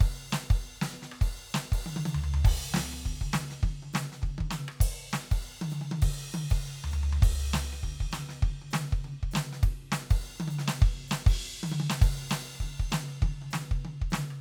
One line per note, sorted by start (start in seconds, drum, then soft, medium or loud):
0.01 kick loud
0.01 crash medium
0.30 snare loud
0.30 hi-hat pedal medium
0.51 kick loud
0.51 crash medium
0.82 snare loud
0.89 hi-hat pedal medium
0.93 snare soft
1.03 snare medium
1.12 cross-stick medium
1.22 kick loud
1.22 crash medium
1.50 hi-hat pedal medium
1.54 snare loud
1.72 kick medium
1.72 crash medium
1.86 high tom loud
1.97 high tom loud
2.06 hi-hat pedal medium
2.06 high tom loud
2.15 floor tom loud
2.24 floor tom loud
2.34 floor tom loud
2.45 kick loud
2.45 crash loud
2.74 snare loud
2.74 hi-hat pedal medium
2.76 snare loud
2.92 snare soft
3.02 kick medium
3.02 hi-hat pedal soft
3.02 high tom medium
3.21 kick medium
3.21 high tom medium
3.33 snare loud
3.33 hi-hat pedal medium
3.33 high tom medium
3.50 snare medium
3.63 kick medium
3.63 high tom medium
3.83 high tom medium
3.93 snare loud
3.93 hi-hat pedal medium
3.93 high tom loud
4.12 snare medium
4.22 kick medium
4.22 high tom medium
4.38 kick medium
4.38 high tom loud
4.51 snare loud
4.51 hi-hat pedal medium
4.51 high tom medium
4.68 cross-stick medium
4.81 kick loud
4.81 crash loud
5.11 snare loud
5.11 hi-hat pedal medium
5.24 snare soft
5.32 kick medium
5.32 crash medium
5.62 high tom loud
5.70 hi-hat pedal medium
5.70 high tom medium
5.82 high tom medium
5.92 high tom loud
6.02 kick loud
6.02 crash medium
6.32 hi-hat pedal medium
6.32 high tom loud
6.51 kick loud
6.51 crash medium
6.84 floor tom loud
6.91 floor tom loud
6.91 hi-hat pedal medium
7.04 floor tom medium
7.13 floor tom loud
7.23 kick loud
7.23 crash medium
7.52 snare loud
7.52 hi-hat pedal medium
7.72 snare soft
7.83 kick medium
7.83 high tom medium
8.01 kick medium
8.01 high tom medium
8.12 snare loud
8.12 hi-hat pedal medium
8.12 high tom medium
8.29 snare medium
8.43 kick loud
8.43 high tom medium
8.62 high tom medium
8.71 snare loud
8.71 hi-hat pedal medium
8.71 high tom loud
8.93 kick medium
9.05 high tom medium
9.23 kick medium
9.32 snare loud
9.32 hi-hat pedal medium
9.32 high tom loud
9.53 snare medium
9.63 kick loud
9.63 ride medium
9.92 snare loud
9.92 hi-hat pedal medium
10.11 kick loud
10.11 crash medium
10.40 high tom loud
10.48 hi-hat pedal medium
10.48 high tom loud
10.59 snare medium
10.68 snare loud
10.80 kick loud
10.80 ride medium
11.08 snare loud
11.08 hi-hat pedal medium
11.27 kick loud
11.27 ride loud
11.63 high tom loud
11.68 hi-hat pedal medium
11.72 high tom loud
11.80 high tom loud
11.90 snare loud
12.02 kick loud
12.02 crash medium
12.29 snare loud
12.29 hi-hat pedal medium
12.29 crash medium
12.54 snare soft
12.61 kick medium
12.61 high tom medium
12.80 kick medium
12.80 high tom medium
12.91 snare loud
12.91 hi-hat pedal medium
12.91 high tom loud
13.09 cross-stick soft
13.22 kick loud
13.22 high tom medium
13.42 high tom medium
13.51 snare loud
13.51 hi-hat pedal medium
13.51 high tom medium
13.71 kick medium
13.85 high tom medium
14.02 kick medium
14.11 snare loud
14.11 hi-hat pedal medium
14.11 high tom loud
14.31 cross-stick medium